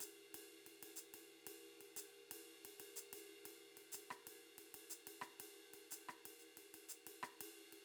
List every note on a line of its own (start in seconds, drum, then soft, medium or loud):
0.01 hi-hat pedal medium
0.01 ride medium
0.35 ride medium
0.67 ride soft
0.83 ride medium
0.97 hi-hat pedal medium
1.15 ride medium
1.47 ride medium
1.81 ride soft
1.97 hi-hat pedal medium
1.97 ride medium
2.32 ride medium
2.66 ride medium
2.81 ride medium
2.97 hi-hat pedal medium
3.14 hi-hat pedal soft
3.14 ride medium
3.46 ride medium
3.78 ride soft
3.93 hi-hat pedal medium
3.93 ride medium
4.11 cross-stick medium
4.28 ride medium
4.59 ride soft
4.75 ride medium
4.91 hi-hat pedal medium
5.08 ride medium
5.22 cross-stick medium
5.41 ride medium
5.74 ride soft
5.91 hi-hat pedal medium
5.91 ride medium
6.09 cross-stick medium
6.26 ride medium
6.40 hi-hat pedal soft
6.58 ride soft
6.75 ride soft
6.89 hi-hat pedal medium
7.07 ride medium
7.24 cross-stick medium
7.41 ride medium
7.73 ride soft